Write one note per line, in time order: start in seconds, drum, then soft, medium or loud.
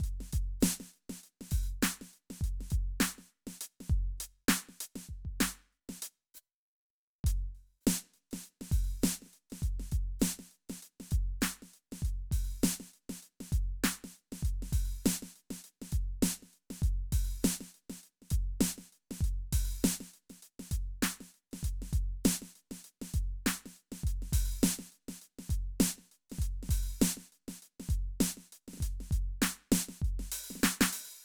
0.01 closed hi-hat medium
0.01 kick soft
0.21 snare soft
0.33 open hi-hat medium
0.33 kick medium
0.61 closed hi-hat loud
0.61 snare loud
0.61 hi-hat pedal medium
0.80 snare soft
0.94 closed hi-hat soft
1.10 snare soft
1.10 closed hi-hat soft
1.24 closed hi-hat soft
1.41 snare soft
1.52 open hi-hat medium
1.52 kick medium
1.82 closed hi-hat loud
1.82 snare loud
1.82 hi-hat pedal medium
2.02 snare soft
2.14 closed hi-hat soft
2.31 snare soft
2.31 closed hi-hat soft
2.42 closed hi-hat medium
2.42 kick medium
2.61 snare soft
2.71 closed hi-hat medium
2.71 kick medium
3.01 closed hi-hat loud
3.01 snare loud
3.19 snare soft
3.47 snare soft
3.61 closed hi-hat loud
3.81 snare soft
3.90 kick medium
3.90 closed hi-hat soft
4.18 closed hi-hat loud
4.18 snare soft
4.49 snare loud
4.49 closed hi-hat soft
4.69 snare soft
4.81 closed hi-hat loud
4.96 snare soft
5.09 kick soft
5.09 closed hi-hat soft
5.25 kick soft
5.41 closed hi-hat loud
5.41 snare loud
5.73 closed hi-hat soft
5.89 snare soft
6.03 closed hi-hat loud
6.35 hi-hat pedal medium
7.25 kick medium
7.25 closed hi-hat loud
7.55 open hi-hat soft
7.81 hi-hat pedal soft
7.87 closed hi-hat loud
7.87 snare loud
8.14 closed hi-hat soft
8.32 snare medium
8.32 closed hi-hat soft
8.44 closed hi-hat medium
8.62 snare soft
8.72 open hi-hat medium
8.72 kick medium
9.02 closed hi-hat loud
9.02 snare loud
9.02 hi-hat pedal medium
9.22 snare soft
9.27 snare soft
9.34 closed hi-hat soft
9.51 snare soft
9.51 closed hi-hat soft
9.63 closed hi-hat medium
9.63 kick medium
9.80 snare soft
9.92 closed hi-hat medium
9.92 kick medium
10.20 closed hi-hat loud
10.20 snare loud
10.20 hi-hat pedal medium
10.39 snare soft
10.52 closed hi-hat soft
10.70 snare soft
10.70 closed hi-hat soft
10.83 closed hi-hat medium
11.00 snare soft
11.11 closed hi-hat medium
11.11 kick medium
11.42 closed hi-hat loud
11.42 snare loud
11.42 hi-hat pedal medium
11.63 snare soft
11.74 closed hi-hat soft
11.92 snare soft
11.92 closed hi-hat soft
12.03 closed hi-hat medium
12.03 kick medium
12.32 open hi-hat medium
12.32 kick medium
12.63 closed hi-hat loud
12.63 snare loud
12.63 hi-hat pedal medium
12.80 snare soft
12.94 closed hi-hat soft
13.10 snare medium
13.10 closed hi-hat soft
13.23 closed hi-hat soft
13.41 snare soft
13.53 kick medium
13.53 closed hi-hat medium
13.84 closed hi-hat loud
13.84 snare loud
14.04 snare soft
14.15 closed hi-hat soft
14.32 snare soft
14.32 closed hi-hat soft
14.43 closed hi-hat medium
14.43 kick medium
14.63 snare soft
14.73 kick medium
14.73 open hi-hat medium
15.05 closed hi-hat loud
15.05 snare loud
15.05 hi-hat pedal medium
15.23 snare soft
15.36 closed hi-hat soft
15.51 snare medium
15.51 closed hi-hat soft
15.64 closed hi-hat medium
15.82 snare soft
15.92 kick medium
15.92 closed hi-hat medium
16.23 closed hi-hat loud
16.23 snare loud
16.43 snare soft
16.54 closed hi-hat soft
16.71 snare soft
16.71 closed hi-hat soft
16.82 closed hi-hat medium
16.82 kick medium
17.13 open hi-hat medium
17.13 kick medium
17.43 closed hi-hat loud
17.43 snare loud
17.43 hi-hat pedal medium
17.61 snare soft
17.75 closed hi-hat soft
17.90 snare soft
17.90 closed hi-hat soft
18.04 closed hi-hat soft
18.22 snare soft
18.31 closed hi-hat loud
18.31 kick medium
18.61 closed hi-hat loud
18.61 snare loud
18.78 snare soft
18.93 closed hi-hat soft
19.11 snare soft
19.11 closed hi-hat soft
19.21 closed hi-hat medium
19.21 kick medium
19.53 open hi-hat loud
19.53 kick medium
19.83 closed hi-hat loud
19.83 snare loud
19.83 hi-hat pedal medium
20.01 snare soft
20.14 closed hi-hat soft
20.30 snare soft
20.30 closed hi-hat soft
20.43 closed hi-hat medium
20.60 snare soft
20.72 closed hi-hat medium
20.72 kick medium
21.03 closed hi-hat loud
21.03 snare loud
21.21 snare soft
21.34 closed hi-hat soft
21.52 snare soft
21.52 closed hi-hat soft
21.63 closed hi-hat medium
21.63 kick soft
21.82 snare soft
21.93 open hi-hat medium
21.93 kick medium
22.25 closed hi-hat loud
22.25 snare loud
22.25 hi-hat pedal medium
22.42 snare soft
22.56 closed hi-hat soft
22.71 snare soft
22.71 closed hi-hat soft
22.85 closed hi-hat medium
23.02 snare soft
23.14 closed hi-hat medium
23.14 kick medium
23.47 closed hi-hat loud
23.47 snare loud
23.66 snare soft
23.77 closed hi-hat soft
23.92 snare soft
23.92 closed hi-hat soft
24.04 closed hi-hat medium
24.04 kick medium
24.23 snare soft
24.33 open hi-hat loud
24.33 kick medium
24.62 closed hi-hat loud
24.62 snare loud
24.62 hi-hat pedal medium
24.79 snare soft
24.92 closed hi-hat soft
25.09 snare soft
25.09 closed hi-hat soft
25.22 closed hi-hat medium
25.39 snare soft
25.50 kick medium
25.50 closed hi-hat medium
25.80 closed hi-hat loud
25.80 snare loud
25.98 snare soft
26.12 closed hi-hat soft
26.30 snare soft
26.30 closed hi-hat soft
26.39 closed hi-hat medium
26.39 kick medium
26.63 snare soft
26.70 open hi-hat loud
26.70 kick medium
27.00 closed hi-hat loud
27.00 snare loud
27.00 hi-hat pedal medium
27.17 snare soft
27.33 closed hi-hat soft
27.48 snare soft
27.48 closed hi-hat soft
27.63 closed hi-hat medium
27.80 snare soft
27.89 kick medium
27.89 closed hi-hat medium
28.21 closed hi-hat loud
28.21 snare loud
28.38 snare soft
28.53 closed hi-hat medium
28.68 snare soft
28.74 snare soft
28.78 kick soft
28.78 snare soft
28.82 closed hi-hat medium
28.82 snare soft
29.01 snare soft
29.12 closed hi-hat medium
29.12 kick medium
29.42 closed hi-hat loud
29.42 snare loud
29.72 closed hi-hat loud
29.72 snare loud
29.89 snare soft
30.02 kick medium
30.02 closed hi-hat soft
30.20 snare soft
30.32 open hi-hat loud
30.51 snare soft
30.56 snare soft
30.56 hi-hat pedal soft
30.60 snare soft
30.64 snare loud
30.81 snare loud
30.93 open hi-hat loud